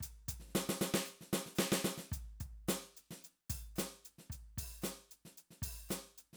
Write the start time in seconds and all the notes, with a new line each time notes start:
0.01 kick, closed hi-hat
0.29 kick, closed hi-hat
0.40 snare
0.45 snare
0.48 snare
0.56 snare
0.70 snare
0.82 snare
0.94 snare
1.06 hi-hat pedal
1.21 snare
1.33 snare
1.47 snare
1.56 snare, hi-hat pedal
1.72 snare
1.85 snare
1.98 snare
2.12 kick, closed hi-hat
2.41 kick, open hi-hat
2.68 snare, closed hi-hat, hi-hat pedal
2.97 closed hi-hat
3.11 snare
3.25 closed hi-hat
3.50 kick, open hi-hat
3.76 snare, closed hi-hat, hi-hat pedal
4.05 closed hi-hat
4.19 snare
4.30 kick, closed hi-hat
4.58 kick, open hi-hat
4.82 snare, closed hi-hat, hi-hat pedal
5.11 closed hi-hat
5.26 snare
5.38 closed hi-hat
5.51 snare
5.63 kick, open hi-hat
5.90 snare, closed hi-hat, hi-hat pedal
6.18 closed hi-hat
6.34 snare